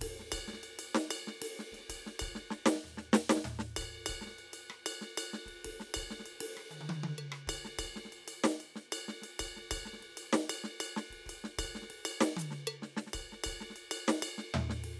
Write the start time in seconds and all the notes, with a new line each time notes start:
0.01 kick, hi-hat pedal, ride
0.09 kick
0.11 kick
0.20 snare
0.32 kick, ride bell
0.39 kick
0.48 snare
0.53 snare
0.59 snare
0.63 snare, ride bell
0.79 ride bell
0.95 snare
1.11 ride bell
1.27 snare
1.42 hi-hat pedal, ride
1.59 snare
1.72 kick, snare, ride bell
1.79 snare
1.90 kick, hi-hat pedal, ride bell
2.07 snare
2.20 kick, ride bell
2.28 kick
2.35 snare
2.51 snare
2.66 snare
2.75 snare
2.84 floor tom, hi-hat pedal
2.98 snare
3.12 snare, hi-hat pedal
3.30 snare
3.36 snare
3.45 hi-hat pedal, floor tom
3.59 snare
3.77 kick, ride bell
3.82 cross-stick
4.06 kick, ride bell
4.21 snare
4.26 snare
4.30 snare
4.39 ride bell
4.54 ride bell
4.70 cross-stick
4.86 ride bell
5.01 snare
5.18 hi-hat pedal, ride bell
5.33 snare
5.45 kick, snare, ride
5.65 kick, ride
5.80 snare
5.94 kick, ride bell
6.02 kick
6.11 snare
6.20 snare
6.26 ride bell
6.41 ride
6.57 cross-stick
6.71 hi-hat pedal, high tom
6.81 high tom
6.89 hi-hat pedal, open hi-hat, high tom
7.04 high tom
7.18 percussion
7.32 cross-stick
7.48 kick, ride bell
7.65 snare
7.79 kick, ride bell
7.85 kick
7.96 snare
8.05 snare
8.12 ride bell
8.28 ride bell
8.44 snare
8.48 hi-hat pedal
8.60 ride bell
8.76 snare
8.92 hi-hat pedal, ride bell
9.08 snare
9.22 snare, ride bell
9.40 kick, hi-hat pedal, ride bell
9.57 snare
9.71 kick, ride bell
9.80 kick
9.86 snare
9.93 snare
10.00 snare, ride
10.17 ride bell
10.33 snare
10.50 ride bell
10.64 snare
10.81 hi-hat pedal, ride bell
10.97 snare
11.10 kick, ride
11.26 kick, hi-hat pedal, ride bell
11.44 snare
11.59 kick, ride bell
11.65 kick
11.75 snare
11.82 snare
11.90 ride
12.05 ride bell
12.21 snare
12.37 hi-hat pedal, high tom
12.51 snare
12.67 percussion
12.82 snare
12.97 snare
13.14 kick, ride bell
13.22 kick
13.24 kick
13.32 snare
13.44 kick, ride bell
13.52 kick
13.61 snare
13.70 snare
13.76 ride bell
13.91 ride bell
14.08 snare
14.21 hi-hat pedal, ride bell
14.38 snare
14.54 floor tom
14.70 snare
14.84 ride
14.94 cross-stick